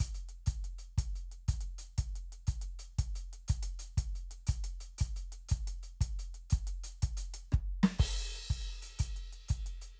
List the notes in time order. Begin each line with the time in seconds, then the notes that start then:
0.00 closed hi-hat, kick
0.15 closed hi-hat
0.29 closed hi-hat
0.46 closed hi-hat, kick
0.64 closed hi-hat
0.79 closed hi-hat
0.98 kick, closed hi-hat
1.16 closed hi-hat
1.32 closed hi-hat
1.48 closed hi-hat, kick
1.54 kick
1.61 closed hi-hat
1.78 closed hi-hat
1.98 kick, closed hi-hat
2.16 open hi-hat
2.32 closed hi-hat
2.47 closed hi-hat, kick
2.62 closed hi-hat
2.79 closed hi-hat
2.99 kick, closed hi-hat
3.16 closed hi-hat
3.33 closed hi-hat
3.48 closed hi-hat, kick
3.63 closed hi-hat
3.79 closed hi-hat
3.98 kick, closed hi-hat
4.15 closed hi-hat
4.31 closed hi-hat
4.47 closed hi-hat, kick
4.64 closed hi-hat
4.81 closed hi-hat
4.98 closed hi-hat, kick
5.16 closed hi-hat
5.32 closed hi-hat
5.49 closed hi-hat, kick
5.67 closed hi-hat
5.83 closed hi-hat
6.01 kick, closed hi-hat
6.19 open hi-hat
6.34 closed hi-hat
6.50 closed hi-hat, kick
6.67 closed hi-hat
6.84 open hi-hat
7.02 kick, closed hi-hat
7.17 closed hi-hat
7.34 closed hi-hat
7.52 kick, cross-stick
7.83 snare
7.99 kick, crash
8.36 open hi-hat
8.50 open hi-hat, kick
8.61 open hi-hat
8.82 open hi-hat
8.99 closed hi-hat, kick
9.16 open hi-hat
9.33 closed hi-hat
9.49 closed hi-hat, kick
9.66 closed hi-hat
9.82 closed hi-hat